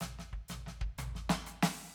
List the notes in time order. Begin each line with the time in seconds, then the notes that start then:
0.01 snare, floor tom, hi-hat pedal
0.19 snare, floor tom
0.33 kick
0.49 snare, floor tom, hi-hat pedal
0.67 snare, floor tom
0.81 kick
0.98 cross-stick, floor tom, hi-hat pedal
1.15 snare
1.30 snare
1.47 cross-stick, hi-hat pedal
1.63 open hi-hat, snare